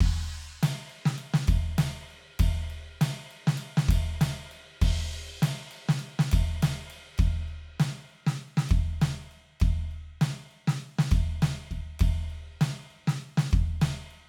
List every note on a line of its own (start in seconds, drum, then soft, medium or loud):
0.01 kick loud
0.01 crash loud
0.63 snare loud
0.63 ride loud
0.90 ride soft
1.06 snare loud
1.18 ride medium
1.34 snare loud
1.48 kick loud
1.48 ride loud
1.78 snare loud
1.78 ride loud
2.11 ride soft
2.40 kick loud
2.40 ride loud
2.70 ride soft
3.01 snare loud
3.01 ride loud
3.31 ride soft
3.47 snare loud
3.58 ride medium
3.77 snare loud
3.89 kick loud
3.89 ride loud
4.21 snare loud
4.21 ride loud
4.51 ride medium
4.82 kick loud
4.82 ride loud
5.14 ride soft
5.42 snare loud
5.42 ride loud
5.71 ride medium
5.89 snare loud
6.00 ride medium
6.19 snare loud
6.32 kick loud
6.32 ride loud
6.63 snare loud
6.63 ride loud
6.90 ride medium
7.18 kick loud
7.18 ride bell medium
7.48 ride bell soft
7.80 snare loud
7.80 ride bell medium
8.10 ride bell soft
8.27 snare loud
8.38 ride bell soft
8.57 snare loud
8.69 kick loud
8.69 ride bell medium
9.02 snare loud
9.02 ride bell medium
9.31 ride bell soft
9.60 kick loud
9.60 ride bell medium
9.91 ride bell soft
10.21 snare loud
10.21 ride bell medium
10.51 ride bell soft
10.68 snare loud
10.81 ride bell soft
10.99 snare loud
11.11 kick loud
11.11 ride bell loud
11.42 snare loud
11.42 ride bell loud
11.71 kick medium
11.71 ride soft
12.00 kick loud
12.00 snare soft
12.00 ride loud
12.00 floor tom soft
12.30 ride bell soft
12.61 snare loud
12.61 ride bell loud
12.91 ride bell soft
13.08 snare loud
13.21 ride bell soft
13.38 snare loud
13.51 kick loud
13.51 ride bell medium
13.82 snare loud
13.82 ride bell loud
14.11 ride soft